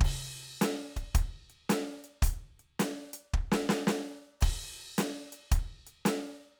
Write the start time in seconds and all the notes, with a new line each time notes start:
0.01 kick, crash
0.62 snare, closed hi-hat
0.97 kick, closed hi-hat
1.15 kick, closed hi-hat
1.50 closed hi-hat
1.70 snare, closed hi-hat
2.04 closed hi-hat
2.22 closed hi-hat, kick
2.60 closed hi-hat
2.80 snare, closed hi-hat
3.14 closed hi-hat
3.34 kick
3.52 snare
3.69 snare
3.87 snare
4.41 kick, hi-hat pedal, crash
4.98 snare, closed hi-hat
5.33 closed hi-hat
5.52 kick, closed hi-hat
5.87 closed hi-hat
6.06 snare, closed hi-hat
6.44 closed hi-hat